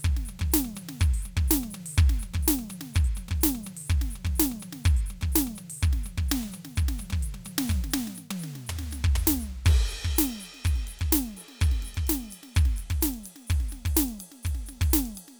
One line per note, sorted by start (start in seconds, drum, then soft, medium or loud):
0.01 kick medium
0.01 hi-hat pedal medium
0.06 high tom medium
0.17 snare soft
0.25 hi-hat pedal medium
0.25 high tom medium
0.39 kick medium
0.39 high tom medium
0.52 snare loud
0.52 hi-hat pedal medium
0.65 high tom medium
0.76 hi-hat pedal medium
0.76 high tom medium
0.89 snare medium
1.00 kick loud
1.00 hi-hat pedal loud
1.04 high tom soft
1.14 open hi-hat medium
1.22 hi-hat pedal medium
1.22 high tom soft
1.37 kick medium
1.37 high tom medium
1.48 snare loud
1.48 hi-hat pedal medium
1.63 high tom medium
1.71 hi-hat pedal medium
1.71 high tom medium
1.86 open hi-hat loud
1.95 kick loud
1.95 hi-hat pedal medium
1.99 high tom soft
2.10 snare medium
2.19 hi-hat pedal medium
2.19 high tom medium
2.34 kick medium
2.34 high tom medium
2.43 hi-hat pedal medium
2.48 snare loud
2.59 high tom medium
2.70 hi-hat pedal medium
2.70 high tom medium
2.81 snare medium
2.94 kick loud
2.94 hi-hat pedal medium
2.94 high tom soft
3.04 open hi-hat medium
3.15 hi-hat pedal medium
3.15 high tom medium
3.29 kick medium
3.29 high tom medium
3.41 snare loud
3.41 hi-hat pedal loud
3.55 high tom medium
3.64 hi-hat pedal medium
3.64 high tom medium
3.77 open hi-hat medium
3.87 kick loud
3.87 hi-hat pedal medium
3.92 high tom medium
4.02 snare medium
4.10 hi-hat pedal medium
4.16 high tom medium
4.25 kick medium
4.25 high tom medium
4.36 hi-hat pedal medium
4.40 snare loud
4.52 high tom medium
4.60 hi-hat pedal medium
4.60 high tom medium
4.73 snare medium
4.84 kick loud
4.84 hi-hat pedal medium
4.84 high tom soft
4.97 open hi-hat medium
5.06 hi-hat pedal medium
5.10 high tom medium
5.21 kick medium
5.21 high tom medium
5.32 snare loud
5.32 hi-hat pedal medium
5.47 high tom medium
5.55 hi-hat pedal medium
5.55 high tom medium
5.70 open hi-hat loud
5.81 kick loud
5.81 hi-hat pedal medium
5.81 high tom medium
5.93 snare soft
6.04 hi-hat pedal medium
6.04 high tom medium
6.18 kick medium
6.18 high tom medium
6.29 snare loud
6.29 hi-hat pedal medium
6.43 high tom soft
6.52 hi-hat pedal medium
6.52 high tom medium
6.65 snare medium
6.76 kick medium
6.76 hi-hat pedal medium
6.76 high tom medium
6.89 snare medium
6.99 hi-hat pedal medium
6.99 high tom medium
7.10 kick medium
7.10 high tom medium
7.23 open hi-hat medium
7.23 hi-hat pedal medium
7.34 high tom medium
7.45 hi-hat pedal medium
7.45 high tom medium
7.58 snare loud
7.67 kick medium
7.67 hi-hat pedal medium
7.71 high tom medium
7.84 snare soft
7.91 snare loud
7.91 hi-hat pedal medium
8.07 snare soft
8.15 snare soft
8.15 hi-hat pedal medium
8.31 high tom loud
8.39 hi-hat pedal medium
8.44 snare soft
8.55 snare soft
8.67 floor tom loud
8.67 hi-hat pedal medium
8.79 snare medium
8.91 snare medium
8.91 hi-hat pedal medium
9.04 kick loud
9.15 floor tom loud
9.15 hi-hat pedal medium
9.27 snare loud
9.40 hi-hat pedal medium
9.65 kick loud
9.65 hi-hat pedal medium
9.65 crash medium
9.65 ride loud
9.88 hi-hat pedal medium
10.05 kick medium
10.16 snare loud
10.16 hi-hat pedal medium
10.21 ride medium
10.40 hi-hat pedal medium
10.46 ride soft
10.54 snare soft
10.65 kick medium
10.65 hi-hat pedal medium
10.65 ride medium
10.76 snare soft
10.87 hi-hat pedal medium
10.87 ride medium
10.99 kick medium
10.99 ride medium
11.12 snare loud
11.12 hi-hat pedal medium
11.23 ride soft
11.37 hi-hat pedal medium
11.37 ride medium
11.48 snare soft
11.61 kick loud
11.61 hi-hat pedal medium
11.61 ride medium
11.72 snare soft
11.82 snare soft
11.82 hi-hat pedal medium
11.82 ride medium
11.95 kick medium
11.95 ride medium
12.07 snare loud
12.07 hi-hat pedal medium
12.07 ride medium
12.23 snare soft
12.30 hi-hat pedal medium
12.30 ride medium
12.43 snare soft
12.55 kick loud
12.55 hi-hat pedal medium
12.55 ride medium
12.65 snare soft
12.76 hi-hat pedal medium
12.76 ride medium
12.90 kick medium
12.90 ride medium
13.01 snare loud
13.01 hi-hat pedal medium
13.14 ride medium
13.24 hi-hat pedal medium
13.24 ride medium
13.36 snare soft
13.47 kick medium
13.47 hi-hat pedal medium
13.47 ride medium
13.60 snare soft
13.69 snare soft
13.69 hi-hat pedal medium
13.85 kick medium
13.85 ride medium
13.95 snare loud
13.95 hi-hat pedal medium
14.09 ride medium
14.20 hi-hat pedal medium
14.20 ride loud
14.32 snare soft
14.43 kick medium
14.43 hi-hat pedal medium
14.43 ride medium
14.55 snare soft
14.66 snare soft
14.66 hi-hat pedal medium
14.81 kick medium
14.81 ride loud
14.90 snare loud
14.90 hi-hat pedal medium
15.06 ride medium
15.15 hi-hat pedal medium
15.15 ride medium
15.28 snare soft